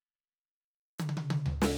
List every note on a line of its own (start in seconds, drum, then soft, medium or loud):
0.98 hi-hat pedal medium
0.98 high tom loud
1.09 high tom medium
1.17 high tom loud
1.30 high tom loud
1.46 floor tom loud
1.62 snare loud
1.62 crash medium